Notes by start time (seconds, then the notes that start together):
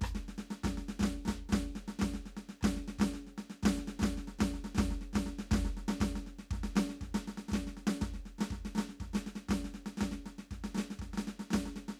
0.01 kick, cross-stick, snare
0.15 snare
0.28 snare
0.38 snare
0.50 snare
0.64 kick, snare
0.77 snare
0.88 snare
0.99 kick, snare
1.03 snare
1.25 kick, snare
1.28 snare
1.49 kick, snare
1.52 snare
1.75 snare
1.88 snare
1.99 snare
2.02 kick, snare
2.14 snare
2.26 snare
2.37 snare
2.49 snare
2.61 kick, cross-stick, snare
2.76 snare
2.88 snare
2.99 kick, snare
3.01 snare
3.14 snare
3.27 snare
3.38 snare
3.50 snare
3.63 kick, snare
3.65 snare
3.77 snare
3.87 snare
3.99 kick, snare
4.03 snare
4.17 snare
4.27 snare
4.39 snare
4.41 kick, snare
4.54 snare
4.64 snare
4.75 kick, snare
4.78 snare
4.90 snare
5.01 snare
5.13 kick, snare
5.16 snare
5.26 snare
5.39 snare
5.51 kick, snare
5.53 snare
5.65 snare
5.77 snare
5.88 snare
6.00 kick, snare
6.16 snare
6.26 snare
6.39 snare
6.51 kick, snare
6.63 snare
6.76 snare
6.89 snare
7.01 kick, snare
7.14 snare
7.27 snare
7.48 kick, snare
7.53 snare
7.67 snare
8.01 kick, snare
8.14 snare
8.25 snare
8.38 snare
8.41 snare
8.50 kick, snare
8.65 snare
8.75 snare
8.78 snare
8.89 snare
9.00 kick, snare
9.13 snare
9.26 snare
9.35 snare
9.49 kick, snare
9.51 snare
9.64 snare
9.74 snare
9.86 snare
9.97 snare
10.01 kick, snare
10.11 snare
10.26 snare
10.38 snare
10.51 kick, snare
10.64 snare
10.75 snare
10.78 snare
10.90 snare
10.99 kick, snare
11.13 snare
11.18 snare
11.27 snare
11.39 snare
11.51 snare
11.53 kick, snare
11.66 snare
11.76 snare
11.88 snare